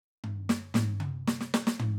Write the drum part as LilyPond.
\new DrumStaff \drummode { \time 4/4 \tempo 4 = 118 r8 tomfh8 sn8 <tomfh sn>8 toml8 sn16 sn16 sn16 sn16 tomfh8 | }